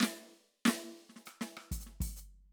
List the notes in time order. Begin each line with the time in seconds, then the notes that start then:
0.00 snare
0.03 snare
0.65 snare
0.68 snare
1.09 snare
1.16 snare
1.26 cross-stick, hi-hat pedal
1.41 snare
1.57 cross-stick
1.72 open hi-hat, kick
1.80 hi-hat pedal
1.86 snare
2.01 kick, open hi-hat
2.16 hi-hat pedal